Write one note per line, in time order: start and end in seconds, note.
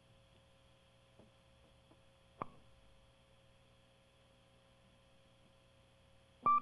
2.42 2.48 C#6
6.46 6.61 D6